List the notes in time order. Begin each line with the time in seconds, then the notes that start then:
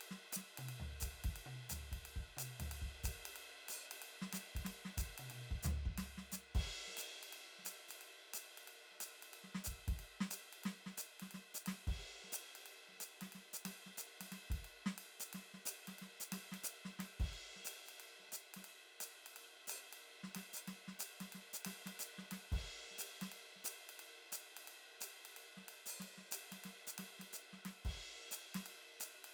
0.01 ride
0.11 snare
0.33 snare, hi-hat pedal, ride
0.58 high tom, ride
0.69 ride
0.80 floor tom
1.00 kick, hi-hat pedal, ride
1.24 kick, ride
1.36 ride
1.46 high tom
1.70 floor tom, hi-hat pedal, ride
1.92 kick, ride
2.05 ride
2.16 kick
2.37 hi-hat pedal, high tom, ride
2.60 floor tom, ride
2.72 ride
2.82 kick
3.04 kick, hi-hat pedal, ride
3.26 ride
3.36 ride
3.69 hi-hat pedal, ride
3.91 ride
4.02 ride
4.22 snare
4.33 snare, hi-hat pedal, ride
4.55 kick, ride
4.65 snare, ride
4.85 snare
4.97 kick, hi-hat pedal, ride
5.18 high tom, ride
5.30 high tom, ride
5.51 kick
5.63 snare, floor tom, hi-hat pedal
5.86 kick
5.98 snare, ride
6.18 snare
6.32 snare, hi-hat pedal
6.55 kick, ride
6.87 snare
6.97 hi-hat pedal, ride
7.23 ride
7.33 ride
7.59 snare
7.62 snare
7.64 snare, hi-hat pedal, ride
7.89 hi-hat pedal, ride
8.01 ride
8.34 hi-hat pedal, ride
8.58 ride
8.68 ride
8.91 snare
9.00 hi-hat pedal, ride
9.21 hi-hat pedal, ride
9.33 ride
9.44 snare
9.55 snare
9.64 kick, hi-hat pedal, ride
9.88 kick, ride
9.99 ride
10.21 snare
10.31 hi-hat pedal, ride
10.53 ride
10.64 snare, ride
10.86 snare
10.98 hi-hat pedal, ride
11.20 snare, ride
11.31 snare, ride
11.55 hi-hat pedal
11.66 snare, ride
11.87 kick, ride
11.98 ride
12.24 snare
12.32 hi-hat pedal, ride
12.55 ride
12.66 ride
12.89 snare
12.92 snare
12.97 snare, hi-hat pedal, ride
13.21 snare, ride
13.32 snare, ride
13.53 hi-hat pedal
13.65 snare, ride
13.86 snare
13.98 hi-hat pedal, ride
14.21 snare, ride
14.32 snare, ride
14.50 kick, ride
14.65 ride
14.86 snare
14.98 ride
15.20 hi-hat pedal, ride
15.33 snare, ride
15.54 snare
15.66 hi-hat pedal, ride
15.87 snare, ride
15.99 snare, ride
16.20 hi-hat pedal
16.32 snare, ride
16.52 snare, ride
16.64 hi-hat pedal, ride
16.85 snare
16.99 snare, ride
17.20 kick, ride
17.33 ride
17.56 snare
17.65 hi-hat pedal, ride
17.86 hi-hat pedal, ride
18.00 ride
18.20 snare
18.28 snare, ride
18.32 hi-hat pedal
18.54 snare, ride
18.65 ride
19.00 hi-hat pedal, ride
19.26 ride
19.36 ride
19.67 hi-hat pedal, ride
19.93 ride
20.23 snare
20.35 snare, ride
20.53 hi-hat pedal, ride
20.68 snare, ride
20.88 snare
20.99 hi-hat pedal, ride
21.20 snare, ride
21.32 snare, ride
21.53 hi-hat pedal
21.65 snare, ride
21.86 snare, ride
21.99 hi-hat pedal, ride
22.18 snare
22.31 snare, ride
22.52 kick, ride
22.91 snare
22.98 hi-hat pedal, ride
23.21 snare, hi-hat pedal, ride
23.32 ride
23.56 snare
23.65 hi-hat pedal, ride
23.89 ride
23.99 ride
24.32 hi-hat pedal, ride
24.57 ride
24.68 ride
25.01 hi-hat pedal, ride
25.25 ride
25.37 ride
25.57 snare
25.68 ride
25.86 hi-hat pedal
25.90 ride
26.00 snare, ride
26.18 snare
26.31 hi-hat pedal, ride
26.52 snare, ride
26.64 snare, ride
26.87 hi-hat pedal
26.98 snare, ride
27.20 snare, ride
27.33 hi-hat pedal, ride
27.53 snare
27.65 snare, ride
27.85 kick, ride
28.31 hi-hat pedal, ride
28.55 snare, ride
28.66 ride
29.00 hi-hat pedal, ride
29.24 ride